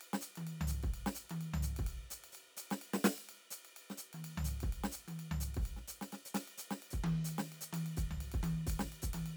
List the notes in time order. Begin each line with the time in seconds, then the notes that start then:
0.01 ride
0.13 snare
0.21 hi-hat pedal, ride
0.36 high tom, ride
0.47 ride
0.61 floor tom
0.67 hi-hat pedal, ride
0.83 kick, ride
0.94 ride
1.06 snare
1.15 hi-hat pedal, ride
1.30 high tom, ride
1.41 ride
1.54 floor tom
1.62 hi-hat pedal, ride
1.77 kick, ride
2.10 hi-hat pedal, ride
2.24 ride
2.32 hi-hat pedal, ride
2.57 hi-hat pedal, ride
2.71 snare, ride
2.82 ride
2.94 snare
3.04 snare, hi-hat pedal, ride
3.18 ride
3.29 ride
3.51 hi-hat pedal, ride
3.65 ride
3.76 ride
3.90 snare
3.98 hi-hat pedal, ride
4.13 high tom, ride
4.24 ride
4.38 floor tom
4.45 hi-hat pedal
4.49 ride
4.61 kick, ride
4.73 ride
4.84 snare
4.92 hi-hat pedal, ride
5.08 high tom, ride
5.19 ride
5.31 floor tom
5.40 hi-hat pedal, ride
5.55 kick, ride
5.62 hi-hat pedal, ride
5.77 snare
5.88 hi-hat pedal, ride
6.01 snare, ride
6.12 snare, ride
6.25 hi-hat pedal
6.35 snare, ride
6.48 ride
6.58 hi-hat pedal, ride
6.71 snare
6.82 ride
6.90 kick, hi-hat pedal
6.95 ride
7.04 high tom, ride
7.25 hi-hat pedal
7.29 ride
7.38 snare, ride
7.52 ride
7.61 hi-hat pedal
7.73 high tom, ride
7.86 ride
7.97 kick, hi-hat pedal, ride
8.11 floor tom
8.21 ride
8.32 kick, ride
8.43 high tom, ride
8.67 kick, hi-hat pedal, ride
8.79 snare, ride
8.92 ride
9.02 kick, hi-hat pedal
9.13 high tom, ride
9.26 ride